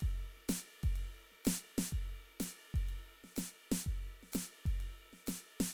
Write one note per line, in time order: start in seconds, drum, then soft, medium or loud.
0.01 kick soft
0.01 ride medium
0.37 snare soft
0.49 snare medium
0.49 hi-hat pedal loud
0.49 ride loud
0.84 kick soft
0.84 ride medium
0.96 ride medium
1.32 snare soft
1.45 snare medium
1.45 hi-hat pedal loud
1.45 ride loud
1.79 snare medium
1.79 ride medium
1.92 kick soft
1.92 ride medium
2.41 snare medium
2.41 hi-hat pedal loud
2.41 ride loud
2.75 kick soft
2.75 ride medium
2.87 hi-hat pedal soft
2.87 ride medium
3.24 snare soft
3.36 snare medium
3.36 hi-hat pedal loud
3.36 ride loud
3.72 snare medium
3.72 ride medium
3.85 kick soft
3.85 ride medium
4.23 snare soft
4.33 snare medium
4.33 hi-hat pedal loud
4.33 ride loud
4.66 kick soft
4.66 ride medium
4.78 hi-hat pedal soft
4.78 ride medium
5.13 snare soft
5.27 snare medium
5.27 hi-hat pedal medium
5.27 ride loud
5.61 snare medium
5.61 ride medium